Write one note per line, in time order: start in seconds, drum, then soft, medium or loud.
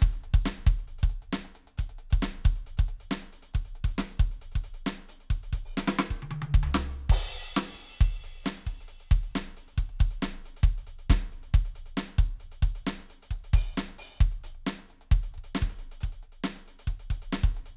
0.01 closed hi-hat medium
0.01 kick loud
0.13 closed hi-hat medium
0.24 closed hi-hat medium
0.34 kick loud
0.34 closed hi-hat soft
0.46 snare loud
0.58 closed hi-hat medium
0.67 closed hi-hat medium
0.67 kick loud
0.79 closed hi-hat soft
0.88 closed hi-hat medium
0.99 closed hi-hat medium
1.03 kick loud
1.10 closed hi-hat medium
1.22 closed hi-hat medium
1.33 snare loud
1.45 closed hi-hat medium
1.55 closed hi-hat medium
1.67 closed hi-hat medium
1.78 closed hi-hat loud
1.78 kick medium
1.90 closed hi-hat medium
1.99 closed hi-hat medium
2.10 closed hi-hat medium
2.10 kick loud
2.22 snare loud
2.34 closed hi-hat medium
2.45 closed hi-hat medium
2.45 kick loud
2.56 closed hi-hat soft
2.67 closed hi-hat medium
2.77 closed hi-hat medium
2.77 kick loud
2.88 closed hi-hat medium
3.00 closed hi-hat medium
3.11 snare loud
3.22 closed hi-hat medium
3.33 closed hi-hat medium
3.42 closed hi-hat medium
3.54 kick medium
3.54 closed hi-hat medium
3.65 closed hi-hat medium
3.75 closed hi-hat medium
3.84 closed hi-hat medium
3.84 kick loud
3.98 snare loud
4.09 closed hi-hat medium
4.20 kick loud
4.20 closed hi-hat medium
4.31 closed hi-hat medium
4.42 closed hi-hat medium
4.52 closed hi-hat soft
4.52 kick medium
4.64 closed hi-hat medium
4.74 closed hi-hat medium
4.86 snare loud
4.98 closed hi-hat soft
5.09 closed hi-hat loud
5.20 closed hi-hat medium
5.30 closed hi-hat medium
5.30 kick loud
5.43 closed hi-hat medium
5.53 open hi-hat medium
5.53 kick medium
5.65 open hi-hat medium
5.74 snare loud
5.74 hi-hat pedal soft
5.88 snare loud
5.99 snare loud
6.11 kick medium
6.11 hi-hat pedal soft
6.22 high tom medium
6.31 high tom loud
6.42 high tom loud
6.54 kick loud
6.63 floor tom loud
6.75 snare loud
7.10 kick loud
7.10 crash loud
7.57 snare loud
7.68 closed hi-hat medium
7.75 kick soft
7.79 closed hi-hat medium
7.91 closed hi-hat medium
8.01 closed hi-hat medium
8.01 kick loud
8.14 closed hi-hat soft
8.35 closed hi-hat soft
8.44 snare loud
8.44 hi-hat pedal medium
8.57 closed hi-hat medium
8.67 closed hi-hat medium
8.67 kick medium
8.81 closed hi-hat medium
8.88 closed hi-hat medium
9.00 closed hi-hat medium
9.11 closed hi-hat medium
9.11 kick loud
9.23 closed hi-hat medium
9.35 snare loud
9.47 closed hi-hat medium
9.57 closed hi-hat medium
9.68 closed hi-hat medium
9.78 closed hi-hat medium
9.78 kick loud
9.89 closed hi-hat soft
10.00 closed hi-hat medium
10.00 kick loud
10.11 closed hi-hat medium
10.22 snare loud
10.34 closed hi-hat medium
10.46 closed hi-hat medium
10.57 closed hi-hat medium
10.63 closed hi-hat medium
10.63 kick loud
10.78 closed hi-hat medium
10.87 closed hi-hat medium
10.99 closed hi-hat medium
11.10 kick loud
11.10 snare loud
11.21 closed hi-hat medium
11.32 closed hi-hat medium
11.43 closed hi-hat medium
11.54 closed hi-hat medium
11.54 kick loud
11.65 closed hi-hat medium
11.75 closed hi-hat medium
11.86 closed hi-hat medium
11.97 snare loud
12.08 closed hi-hat medium
12.19 closed hi-hat medium
12.19 kick loud
12.40 closed hi-hat medium
12.52 closed hi-hat medium
12.62 closed hi-hat medium
12.62 kick loud
12.75 closed hi-hat medium
12.87 snare loud
12.99 closed hi-hat medium
13.10 closed hi-hat medium
13.23 closed hi-hat medium
13.31 kick medium
13.31 closed hi-hat medium
13.44 closed hi-hat medium
13.54 open hi-hat loud
13.54 kick loud
13.68 open hi-hat soft
13.73 hi-hat pedal soft
13.77 snare loud
13.88 closed hi-hat medium
13.88 kick soft
13.99 open hi-hat loud
14.11 open hi-hat soft
14.17 kick loud
14.17 hi-hat pedal soft
14.22 closed hi-hat soft
14.32 closed hi-hat soft
14.44 closed hi-hat loud
14.55 closed hi-hat soft
14.67 snare loud
14.79 closed hi-hat medium
14.90 closed hi-hat medium
15.01 closed hi-hat medium
15.12 kick loud
15.12 closed hi-hat medium
15.23 closed hi-hat medium
15.34 kick soft
15.34 closed hi-hat medium
15.44 closed hi-hat medium
15.55 snare loud
15.62 kick medium
15.70 closed hi-hat medium
15.79 closed hi-hat medium
15.92 closed hi-hat medium
16.01 closed hi-hat loud
16.01 kick medium
16.12 closed hi-hat medium
16.23 closed hi-hat medium
16.32 closed hi-hat medium
16.44 snare loud
16.56 closed hi-hat medium
16.68 closed hi-hat medium
16.79 closed hi-hat medium
16.87 kick medium
16.87 closed hi-hat medium
17.00 closed hi-hat medium
17.10 closed hi-hat medium
17.10 kick medium
17.22 closed hi-hat medium
17.33 snare loud
17.44 closed hi-hat medium
17.44 kick loud
17.57 closed hi-hat medium
17.66 closed hi-hat medium